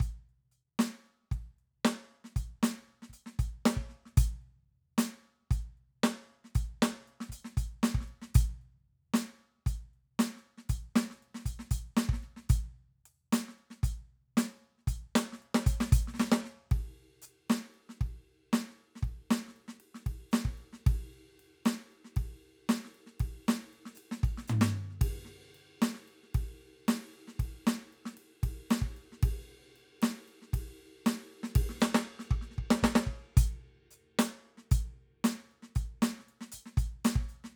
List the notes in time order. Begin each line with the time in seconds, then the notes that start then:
0.02 closed hi-hat, kick
0.29 closed hi-hat
0.52 closed hi-hat
0.79 closed hi-hat, snare
1.06 closed hi-hat
1.31 kick, closed hi-hat
1.58 closed hi-hat
1.85 closed hi-hat, snare
2.24 snare
2.36 closed hi-hat, kick
2.63 closed hi-hat, snare
3.02 snare
3.09 closed hi-hat, kick
3.26 snare
3.39 closed hi-hat, kick
3.65 closed hi-hat, snare
3.77 kick
3.89 snare
4.05 snare
4.17 closed hi-hat, kick
4.42 closed hi-hat
4.98 closed hi-hat, snare
5.51 closed hi-hat, kick
5.77 closed hi-hat
6.03 snare, closed hi-hat
6.44 snare
6.55 closed hi-hat, kick
6.82 closed hi-hat, snare
7.07 closed hi-hat
7.20 snare
7.29 closed hi-hat, kick
7.44 snare
7.57 closed hi-hat, kick
7.83 closed hi-hat, snare
7.94 kick
8.00 snare
8.07 closed hi-hat
8.22 snare
8.34 closed hi-hat, kick
8.61 closed hi-hat
9.14 closed hi-hat, snare
9.66 closed hi-hat, kick
9.93 closed hi-hat
10.19 closed hi-hat, snare
10.36 snare
10.58 snare
10.69 closed hi-hat, kick
10.96 closed hi-hat, snare
11.10 snare
11.22 closed hi-hat
11.34 snare
11.39 snare
11.46 closed hi-hat, kick
11.59 snare
11.71 closed hi-hat, kick
11.97 closed hi-hat, snare
12.09 kick
12.13 snare
12.22 snare, closed hi-hat
12.36 snare
12.49 closed hi-hat, kick
13.05 closed hi-hat
13.32 closed hi-hat, snare
13.48 snare
13.58 closed hi-hat
13.70 snare
13.83 closed hi-hat, kick
14.37 closed hi-hat, snare
14.78 snare
14.87 closed hi-hat, kick
15.15 closed hi-hat, snare
15.32 snare
15.42 closed hi-hat
15.54 snare
15.66 closed hi-hat, kick
15.80 snare
15.92 closed hi-hat, kick
16.07 snare
16.14 snare
16.16 snare, hi-hat pedal
16.20 snare
16.32 snare
16.44 snare
16.71 kick, ride
17.22 hi-hat pedal, ride
17.50 snare, ride
17.74 ride
17.89 snare
18.01 kick, ride
18.53 snare, ride
18.69 snare
18.95 snare
19.03 kick, ride
19.31 snare, ride
19.48 snare
19.56 ride
19.68 snare
19.80 ride
19.94 snare
20.06 kick, ride
20.31 snare, hi-hat pedal, ride
20.45 kick
20.57 ride
20.73 snare
20.86 kick, ride
21.13 ride
21.39 ride
21.65 snare, ride
21.92 ride
22.05 snare
22.16 kick, ride
22.42 ride
22.69 snare, ride
22.85 snare
22.95 ride
23.06 snare
23.20 kick, ride
23.48 snare, ride
23.73 ride
23.85 snare
23.95 hi-hat pedal, ride
24.11 snare
24.23 kick, ride bell
24.37 snare
24.47 floor tom, hi-hat pedal
24.61 snare
24.74 floor tom
24.90 snare
25.01 kick, ride
25.25 snare
25.55 ride
25.82 snare, ride
25.95 snare
26.08 ride
26.23 snare
26.34 kick, ride
26.88 snare, ride
27.14 ride
27.27 snare
27.39 kick, ride
27.67 snare, ride
27.93 ride
28.05 snare
28.17 ride
28.43 kick, ride
28.71 snare, ride
28.82 kick, snare
28.97 ride
29.12 snare
29.23 kick, ride
29.51 ride
29.76 ride
30.02 snare, ride
30.28 ride
30.42 snare
30.53 kick, ride
31.06 snare, ride
31.43 snare
31.55 kick, ride
31.69 snare
31.75 snare
31.79 snare, hi-hat pedal
31.82 snare
31.94 snare
32.19 snare
32.31 kick, cross-stick
32.41 snare
32.51 snare
32.58 kick
32.70 snare
32.83 kick, snare
32.95 snare
33.07 kick
33.37 closed hi-hat, kick
33.91 hi-hat pedal
34.19 closed hi-hat, snare
34.57 snare
34.71 closed hi-hat, kick
35.24 closed hi-hat, snare
35.51 closed hi-hat
35.62 snare
35.75 closed hi-hat, kick
36.02 closed hi-hat, snare
36.19 snare
36.28 closed hi-hat
36.41 snare
36.52 closed hi-hat, kick
36.66 snare
36.77 closed hi-hat, kick
37.05 closed hi-hat, snare
37.15 kick
37.21 snare
37.29 closed hi-hat
37.44 snare